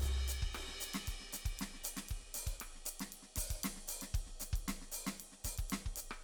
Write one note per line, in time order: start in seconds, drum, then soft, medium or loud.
0.01 kick soft
0.01 hi-hat pedal medium
0.01 ride medium
0.18 cross-stick soft
0.28 hi-hat pedal loud
0.28 ride medium
0.43 kick medium
0.53 cross-stick medium
0.53 hi-hat pedal soft
0.53 ride medium
0.68 snare soft
0.81 hi-hat pedal loud
0.81 ride medium
0.94 snare medium
0.94 ride medium
1.06 kick soft
1.06 hi-hat pedal soft
1.06 ride medium
1.21 snare soft
1.33 snare soft
1.33 hi-hat pedal loud
1.33 ride medium
1.46 kick soft
1.46 ride medium
1.58 snare medium
1.58 hi-hat pedal soft
1.58 ride medium
1.74 snare soft
1.82 kick soft
1.82 hi-hat pedal loud
1.82 ride medium
1.97 snare medium
1.97 ride medium
2.08 kick soft
2.08 hi-hat pedal soft
2.08 ride medium
2.20 snare soft
2.34 snare soft
2.34 hi-hat pedal loud
2.34 ride medium
2.47 kick soft
2.47 ride medium
2.61 cross-stick medium
2.61 ride medium
2.76 snare soft
2.86 hi-hat pedal loud
2.86 ride medium
3.00 snare medium
3.00 ride medium
3.12 ride medium
3.23 snare soft
3.36 kick soft
3.36 snare soft
3.36 hi-hat pedal loud
3.36 ride medium
3.51 kick soft
3.51 ride medium
3.61 snare medium
3.61 hi-hat pedal soft
3.61 ride loud
3.77 snare soft
3.88 hi-hat pedal loud
3.88 ride medium
4.02 snare soft
4.02 ride medium
4.14 kick medium
4.14 ride medium
4.27 snare soft
4.40 snare soft
4.40 hi-hat pedal medium
4.40 ride medium
4.53 kick medium
4.53 ride medium
4.68 snare medium
4.68 ride medium
4.82 snare soft
4.92 hi-hat pedal loud
4.92 ride medium
5.07 snare medium
5.07 ride medium
5.17 hi-hat pedal soft
5.17 ride medium
5.32 snare soft
5.45 kick soft
5.45 snare soft
5.45 hi-hat pedal loud
5.45 ride medium
5.58 kick soft
5.58 ride medium
5.69 snare medium
5.69 hi-hat pedal soft
5.69 ride medium
5.86 kick soft
5.96 hi-hat pedal loud
5.96 ride medium
6.11 cross-stick medium